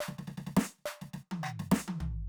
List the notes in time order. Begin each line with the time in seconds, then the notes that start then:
0.00 percussion
0.08 snare
0.18 snare
0.27 snare
0.47 snare
0.57 snare
0.78 snare
0.86 percussion
1.01 snare
1.13 snare
1.31 open hi-hat, high tom
1.43 percussion
1.59 snare
1.72 snare
1.88 high tom
2.00 floor tom